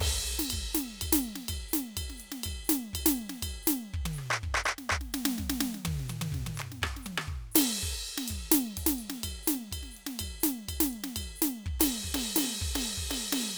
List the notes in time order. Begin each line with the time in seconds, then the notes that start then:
0.01 kick, crash
0.15 kick
0.25 hi-hat pedal
0.40 snare
0.51 kick, ride bell
0.59 kick
0.74 snare, hi-hat pedal
1.02 kick, ride bell
1.09 kick
1.13 snare
1.21 hi-hat pedal, ride
1.36 snare
1.49 kick, ride bell
1.56 kick
1.69 hi-hat pedal
1.74 snare
1.97 kick, ride bell
2.04 kick
2.10 snare
2.18 hi-hat pedal, ride
2.32 snare
2.44 kick, ride bell
2.52 kick
2.65 hi-hat pedal
2.70 snare
2.94 kick, ride bell
3.06 snare
3.13 hi-hat pedal
3.18 ride
3.30 snare
3.43 kick, ride bell
3.49 kick
3.63 hi-hat pedal
3.68 snare
3.94 kick
4.00 kick
4.05 kick, mid tom
4.14 hi-hat pedal
4.19 cross-stick
4.31 percussion
4.44 kick
4.51 kick, percussion
4.64 percussion, hi-hat pedal
4.79 snare
4.90 kick, percussion
5.02 snare
5.14 snare, hi-hat pedal
5.26 snare
5.39 kick, snare
5.46 kick
5.50 snare
5.61 snare, hi-hat pedal
5.75 snare
5.86 kick, mid tom
5.94 kick
6.00 snare
6.06 snare, hi-hat pedal
6.10 snare, mid tom
6.22 mid tom
6.33 kick, snare
6.38 kick
6.47 mid tom
6.55 percussion, hi-hat pedal
6.72 snare
6.83 kick, cross-stick
6.97 snare
7.03 hi-hat pedal, high tom
7.13 snare
7.18 cross-stick
7.28 kick
7.34 kick
7.52 hi-hat pedal, crash
7.56 snare
7.83 kick
7.89 kick
8.05 hi-hat pedal
8.18 snare
8.28 kick, ride bell
8.37 kick
8.52 snare, hi-hat pedal
8.78 kick, ride
8.87 snare
8.98 hi-hat pedal, ride
9.10 snare
9.24 kick, ride bell
9.43 hi-hat pedal
9.48 snare
9.55 snare
9.72 kick, ride bell
9.79 kick
9.83 snare
9.92 hi-hat pedal
9.97 ride
10.07 snare
10.20 kick, ride bell
10.41 snare, hi-hat pedal
10.69 kick, ride bell
10.81 snare
10.88 hi-hat pedal
10.94 ride
11.04 snare
11.17 kick, ride bell
11.36 hi-hat pedal
11.42 snare
11.66 kick
11.74 kick
11.76 kick
11.80 snare, hi-hat pedal, crash
12.05 kick
12.15 snare, crash
12.36 snare, crash
12.45 snare
12.62 kick
12.70 kick
12.75 snare, crash
12.98 kick
13.10 snare, crash
13.33 snare, crash
13.43 snare